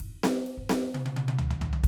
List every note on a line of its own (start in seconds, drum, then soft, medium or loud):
0.00 kick soft
0.00 ride medium
0.23 snare loud
0.23 ride medium
0.46 ride soft
0.57 kick soft
0.69 snare loud
0.69 ride medium
0.94 high tom loud
1.06 high tom loud
1.16 high tom loud
1.28 high tom loud
1.39 floor tom loud
1.51 floor tom loud
1.61 floor tom loud
1.73 floor tom loud
1.83 kick loud
1.83 ride medium